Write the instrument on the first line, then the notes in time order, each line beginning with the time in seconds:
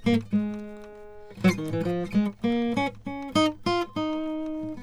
acoustic guitar
0.07 A#3
0.34 G#3
1.45 F3
1.59 D#3
1.75 E3
1.87 F3
2.16 G#3
2.45 A#3
2.78 C#4
3.08 C#4
3.37 D#4
3.67 F4
3.97 D#4